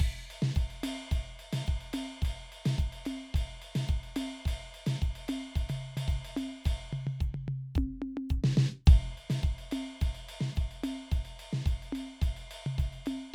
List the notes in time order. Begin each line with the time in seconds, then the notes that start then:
0.01 kick, hi-hat pedal, ride
0.32 hi-hat pedal, ride
0.44 snare
0.57 kick, hi-hat pedal, ride
0.72 ride
0.86 high tom, ride
1.13 kick, hi-hat pedal, ride
1.41 ride
1.55 snare, ride
1.68 kick, hi-hat pedal
1.83 ride
1.95 high tom, ride
2.24 kick, hi-hat pedal, ride
2.54 ride
2.67 snare, ride
2.80 kick, hi-hat pedal
2.94 ride
3.08 high tom, ride
3.36 kick, hi-hat pedal, ride
3.64 ride
3.77 snare, ride
3.90 kick, hi-hat pedal
4.05 ride
4.18 high tom, ride
4.47 kick, hi-hat pedal, ride
4.76 ride
4.88 snare, ride
5.04 kick, hi-hat pedal
5.17 ride
5.30 high tom, ride
5.58 kick, hi-hat pedal, ride
5.71 floor tom, ride
5.99 floor tom, ride
6.10 kick, hi-hat pedal
6.27 ride
6.39 high tom, ride
6.66 kick, hi-hat pedal, ride
6.95 floor tom
7.09 floor tom
7.23 kick, hi-hat pedal
7.36 floor tom
7.50 floor tom
7.77 kick, hi-hat pedal, high tom
8.04 high tom
8.19 high tom
8.31 kick, hi-hat pedal
8.46 snare
8.59 snare
8.88 kick, hi-hat pedal, ride
9.15 kick
9.19 ride
9.32 snare, ride
9.44 kick, hi-hat pedal
9.60 ride
9.73 high tom, ride
10.03 kick, hi-hat pedal, ride
10.17 ride
10.31 ride
10.43 snare
10.57 kick, hi-hat pedal, ride
10.73 ride
10.86 high tom, ride
11.13 kick, hi-hat pedal, ride
11.27 ride
11.41 ride
11.55 snare
11.68 kick, hi-hat pedal, ride
11.84 ride
11.95 high tom, ride
12.24 kick, hi-hat pedal, ride
12.39 ride
12.53 ride
12.68 floor tom
12.80 kick, hi-hat pedal, ride
12.95 ride
13.08 high tom, ride